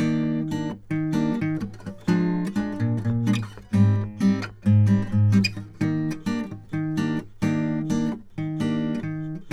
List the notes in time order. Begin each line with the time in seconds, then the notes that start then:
0.00 D#3 A#3 D4 G4
0.53 A#3 D4 G4
0.92 D#3
1.14 A#3 D4 G4
1.43 D#3
2.09 F3 G#3 D4 F4
2.57 G#3 D4 F4
2.81 A#2
3.07 A#2
3.28 G#3 D4 F4
3.75 G#2 G3 C4 D#4
4.22 G3 C4 D#4
4.67 G#2
4.88 G3 C4 D#4
5.14 G#2
5.34 G3 C4 D#4
5.58 D#3
5.82 D#3 A#3 D4 G4
6.28 A#3 D4 G4
6.53 D#3
6.75 D#3
6.99 A#3 D4 G4
7.43 D#3 A#3 D4 G4
7.91 A#3 D4 G4
8.39 D#3
8.62 A#3 D4 G4
9.05 D#3